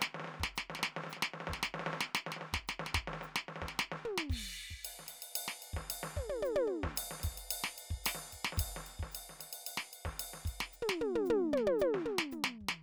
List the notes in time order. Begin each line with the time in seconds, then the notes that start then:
0.01 snare, hi-hat pedal
0.14 snare
0.20 snare
0.27 snare
0.34 snare
0.40 kick, snare
0.43 snare
0.55 snare, hi-hat pedal
0.70 snare
0.75 snare
0.79 snare
0.83 snare
0.96 snare
1.03 snare
1.09 snare, hi-hat pedal
1.22 snare
1.33 snare
1.40 snare
1.47 kick, snare
1.53 snare
1.63 snare, hi-hat pedal
1.74 snare
1.79 snare
1.86 snare
1.93 snare
2.00 snare
2.15 snare, hi-hat pedal
2.26 snare
2.32 snare
2.36 snare
2.41 snare
2.53 kick, snare
2.67 snare, hi-hat pedal
2.79 snare
2.86 snare
2.94 kick, snare
3.07 snare
3.13 snare
3.21 snare, hi-hat pedal
3.36 snare
3.48 snare
3.56 snare
3.61 kick, snare
3.68 snare
3.78 snare, hi-hat pedal
3.92 snare
4.04 mid tom
4.18 snare
4.29 kick, hi-hat pedal, crash
4.40 kick
4.70 kick
4.83 hi-hat pedal, ride bell
4.99 snare
5.06 snare, ride
5.22 ride
5.35 ride bell
5.40 hi-hat pedal
5.48 snare
5.62 ride
5.73 kick, snare
5.78 kick
5.90 hi-hat pedal, ride
6.03 snare
6.16 kick, high tom
6.29 high tom
6.42 hi-hat pedal, high tom
6.55 high tom
6.67 high tom
6.83 kick, snare
6.96 hi-hat pedal, ride bell
7.11 snare
7.20 snare, ride
7.24 kick, snare
7.30 kick, snare
7.37 snare, ride bell
7.50 hi-hat pedal, ride bell
7.64 snare
7.78 ride
7.90 kick
7.96 kick
8.04 snare, hi-hat pedal, ride bell
8.15 snare
8.32 kick, ride
8.44 snare
8.52 snare
8.57 kick, hi-hat pedal, ride bell
8.64 kick
8.68 kick
8.76 snare
8.86 ride
8.99 kick, snare
9.11 hi-hat pedal, ride bell
9.29 snare
9.36 snare
9.40 snare, ride
9.53 ride
9.66 hi-hat pedal, ride
9.77 snare
9.93 ride
10.05 kick, snare
10.10 kick
10.19 hi-hat pedal, ride bell
10.33 snare
10.45 kick, ride
10.60 snare
10.72 hi-hat pedal
10.82 mid tom
10.89 snare
11.00 mid tom
11.15 mid tom
11.25 hi-hat pedal
11.29 mid tom
11.53 high tom
11.57 snare
11.66 high tom
11.79 hi-hat pedal, high tom
11.94 snare
12.05 mid tom
12.18 snare
12.31 floor tom, hi-hat pedal
12.44 snare
12.60 kick
12.68 snare